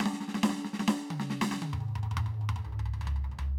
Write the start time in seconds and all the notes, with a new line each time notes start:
0.00 snare
0.06 snare
0.13 snare
0.20 snare
0.28 snare
0.34 snare
0.43 snare
0.49 snare
0.58 snare
0.65 snare
0.73 snare
0.79 snare
0.88 snare
1.10 high tom
1.20 snare
1.30 snare
1.41 snare
1.51 snare
1.62 high tom
1.73 mid tom
1.78 mid tom, ride
1.88 mid tom
1.95 mid tom
2.03 mid tom
2.11 mid tom
2.17 mid tom
2.26 mid tom
2.34 mid tom
2.41 mid tom
2.49 mid tom
2.56 mid tom
2.64 floor tom
2.72 floor tom
2.79 floor tom
2.85 floor tom
2.93 floor tom
3.01 floor tom
3.07 floor tom
3.16 floor tom
3.24 floor tom
3.31 floor tom
3.39 floor tom